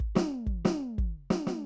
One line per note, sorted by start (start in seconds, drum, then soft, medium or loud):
0.00 kick soft
0.15 snare loud
0.15 floor tom loud
0.47 kick soft
0.64 snare loud
0.64 floor tom loud
0.98 kick medium
1.30 snare medium
1.30 floor tom loud
1.47 snare medium
1.47 floor tom medium